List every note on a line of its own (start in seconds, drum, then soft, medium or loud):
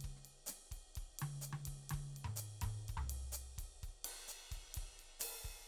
0.01 kick soft
0.01 ride soft
0.09 kick soft
0.16 snare soft
0.25 ride soft
0.46 snare soft
0.46 hi-hat pedal medium
0.46 ride medium
0.72 kick soft
0.72 ride soft
0.77 kick soft
0.96 kick soft
0.96 ride soft
1.02 kick soft
1.19 high tom medium
1.19 ride medium
1.42 hi-hat pedal medium
1.42 ride soft
1.53 high tom medium
1.66 kick soft
1.66 ride medium
1.72 kick soft
1.90 kick soft
1.90 high tom medium
1.90 ride medium
1.99 kick soft
2.17 ride soft
2.25 mid tom medium
2.36 hi-hat pedal medium
2.36 ride medium
2.62 kick soft
2.62 mid tom medium
2.62 ride medium
2.69 kick soft
2.89 kick soft
2.89 ride soft
2.94 kick soft
2.94 floor tom medium
3.10 ride medium
3.32 hi-hat pedal medium
3.32 ride medium
3.58 kick soft
3.58 ride medium
3.63 kick soft
3.83 kick soft
3.83 ride soft
3.89 kick soft
4.05 ride medium
4.05 crash medium
4.28 hi-hat pedal medium
4.28 ride soft
4.52 kick soft
4.52 ride soft
4.57 kick soft
4.75 kick soft
4.75 ride medium
4.83 kick soft
5.00 ride soft
5.20 hi-hat pedal medium
5.20 crash loud
5.20 ride medium
5.45 kick soft
5.45 ride soft
5.50 kick soft